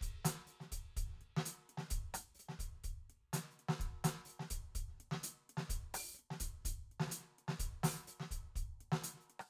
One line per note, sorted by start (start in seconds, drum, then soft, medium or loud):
0.01 closed hi-hat medium
0.01 kick soft
0.09 kick soft
0.25 open hi-hat loud
0.25 snare medium
0.47 closed hi-hat soft
0.47 hi-hat pedal soft
0.60 snare soft
0.68 closed hi-hat medium
0.68 kick soft
0.68 snare soft
0.97 closed hi-hat medium
0.97 kick soft
1.03 kick soft
1.03 snare soft
1.10 snare soft
1.15 snare soft
1.21 closed hi-hat soft
1.37 snare medium
1.46 closed hi-hat medium
1.69 closed hi-hat soft
1.77 snare medium
1.90 closed hi-hat medium
1.90 kick soft
1.97 kick soft
2.14 closed hi-hat medium
2.14 cross-stick medium
2.35 hi-hat pedal soft
2.39 closed hi-hat soft
2.49 snare soft
2.59 closed hi-hat medium
2.59 kick soft
2.74 snare soft
2.84 closed hi-hat medium
2.84 kick soft
3.10 closed hi-hat soft
3.33 closed hi-hat medium
3.33 snare medium
3.51 hi-hat pedal soft
3.59 closed hi-hat soft
3.69 snare medium
3.80 kick soft
3.80 closed hi-hat medium
4.04 closed hi-hat loud
4.04 snare medium
4.25 closed hi-hat soft
4.25 hi-hat pedal medium
4.39 snare medium
4.50 closed hi-hat medium
4.50 kick soft
4.69 snare soft
4.75 closed hi-hat medium
4.75 kick soft
4.83 kick soft
4.88 snare soft
4.94 snare soft
5.00 closed hi-hat soft
5.11 snare medium
5.23 closed hi-hat loud
5.49 closed hi-hat soft
5.57 snare medium
5.69 closed hi-hat medium
5.69 kick soft
5.94 open hi-hat loud
5.94 cross-stick medium
6.14 hi-hat pedal soft
6.19 closed hi-hat soft
6.30 snare medium
6.40 closed hi-hat medium
6.40 kick soft
6.59 snare soft
6.65 closed hi-hat medium
6.65 kick soft
6.71 kick soft
6.91 closed hi-hat soft
7.00 snare medium
7.07 snare soft
7.11 closed hi-hat loud
7.20 snare soft
7.38 closed hi-hat soft
7.48 snare medium
7.59 closed hi-hat medium
7.59 kick soft
7.67 kick soft
7.83 open hi-hat loud
7.83 snare medium
7.95 snare soft
8.07 closed hi-hat soft
8.07 hi-hat pedal medium
8.20 snare medium
8.31 closed hi-hat medium
8.31 kick soft
8.46 snare soft
8.56 closed hi-hat medium
8.56 kick soft
8.81 closed hi-hat soft
8.92 snare medium
9.02 closed hi-hat loud
9.02 snare soft
9.14 snare soft
9.20 hi-hat pedal soft
9.30 closed hi-hat soft
9.39 cross-stick medium